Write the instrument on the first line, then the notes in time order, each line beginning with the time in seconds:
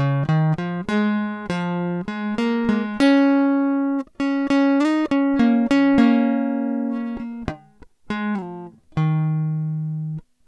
acoustic guitar
0.02 C#3
0.31 D#3
0.60 F3
0.91 G#3
1.52 F3
2.10 G#3
2.40 A#3
2.71 G#3
3.02 C#4
4.22 C#4
4.53 C#4
4.83 D#4
5.13 C#4
5.41 A#3
5.73 C#4
6.00 A#3
7.19 A#3
8.12 G#3
8.37 F3
8.99 D#3